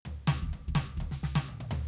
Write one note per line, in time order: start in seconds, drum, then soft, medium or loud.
0.05 floor tom medium
0.27 snare loud
0.27 floor tom medium
0.42 kick medium
0.53 floor tom medium
0.68 kick medium
0.75 snare medium
0.75 floor tom medium
0.97 kick medium
0.97 floor tom medium
1.11 snare medium
1.23 snare medium
1.35 snare medium
1.48 high tom medium
1.60 high tom medium
1.71 floor tom loud